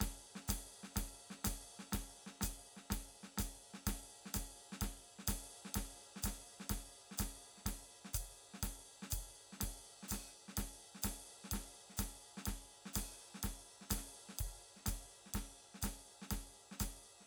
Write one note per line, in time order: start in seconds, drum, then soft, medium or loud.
0.01 kick soft
0.01 snare soft
0.01 ride loud
0.36 snare soft
0.48 kick soft
0.48 snare soft
0.48 hi-hat pedal loud
0.48 ride loud
0.84 snare soft
0.95 kick soft
0.95 snare soft
0.95 hi-hat pedal soft
0.95 ride loud
1.31 snare soft
1.45 kick soft
1.45 snare medium
1.45 hi-hat pedal loud
1.45 ride loud
1.80 snare soft
1.92 kick soft
1.92 snare medium
1.92 hi-hat pedal soft
1.92 ride medium
2.27 snare soft
2.42 kick soft
2.42 snare soft
2.42 hi-hat pedal loud
2.42 ride loud
2.77 snare soft
2.91 kick soft
2.91 snare soft
2.91 hi-hat pedal soft
2.91 ride medium
3.24 snare soft
3.38 kick soft
3.38 snare soft
3.38 hi-hat pedal medium
3.38 ride loud
3.74 snare soft
3.85 kick soft
3.85 snare medium
3.85 hi-hat pedal soft
3.85 ride loud
4.26 snare soft
4.34 kick soft
4.34 snare soft
4.34 hi-hat pedal medium
4.34 ride loud
4.73 snare soft
4.82 kick soft
4.82 snare soft
4.82 ride medium
5.19 snare soft
5.28 kick soft
5.28 snare soft
5.28 hi-hat pedal medium
5.28 ride loud
5.66 snare soft
5.75 kick soft
5.75 snare soft
5.75 ride loud
6.17 snare soft
6.23 kick soft
6.23 snare soft
6.23 hi-hat pedal medium
6.23 ride loud
6.61 snare soft
6.70 kick soft
6.70 snare soft
6.70 ride loud
7.12 snare soft
7.18 kick soft
7.18 snare soft
7.18 hi-hat pedal loud
7.18 ride loud
7.58 snare soft
7.66 kick soft
7.66 snare soft
7.66 ride loud
8.05 snare soft
8.14 kick soft
8.14 hi-hat pedal loud
8.14 ride loud
8.54 snare soft
8.59 kick soft
8.59 hi-hat pedal soft
8.59 ride loud
8.63 snare soft
9.03 snare soft
9.11 kick soft
9.11 hi-hat pedal medium
9.11 ride loud
9.53 snare soft
9.61 kick soft
9.61 snare soft
9.61 ride loud
10.03 snare soft
10.09 kick soft
10.09 snare soft
10.09 hi-hat pedal medium
10.09 ride medium
10.49 snare soft
10.58 kick soft
10.58 snare soft
10.58 ride loud
10.95 snare soft
11.03 kick soft
11.03 snare soft
11.03 hi-hat pedal medium
11.03 ride loud
11.45 snare soft
11.52 kick soft
11.52 snare soft
11.52 ride loud
11.90 snare soft
11.98 kick soft
11.98 snare soft
11.98 hi-hat pedal medium
11.98 ride loud
12.38 snare soft
12.44 snare soft
12.44 hi-hat pedal soft
12.44 ride medium
12.48 kick soft
12.86 snare soft
12.94 kick soft
12.94 snare soft
12.94 hi-hat pedal medium
12.94 ride loud
13.35 snare soft
13.44 kick soft
13.44 snare soft
13.44 ride loud
13.82 snare soft
13.90 kick soft
13.90 snare soft
13.90 hi-hat pedal medium
13.90 ride loud
13.96 snare soft
14.29 snare soft
14.37 kick soft
14.37 hi-hat pedal soft
14.37 ride medium
14.77 snare soft
14.87 kick soft
14.87 snare soft
14.87 hi-hat pedal medium
14.87 ride loud
15.26 snare soft
15.34 kick soft
15.34 snare soft
15.34 ride medium
15.75 snare soft
15.82 kick soft
15.82 snare soft
15.82 hi-hat pedal medium
15.82 ride loud
16.22 snare soft
16.29 kick soft
16.29 snare soft
16.29 hi-hat pedal soft
16.29 ride medium
16.72 snare soft
16.80 kick soft
16.80 snare soft
16.80 hi-hat pedal medium
16.80 ride loud
17.21 snare soft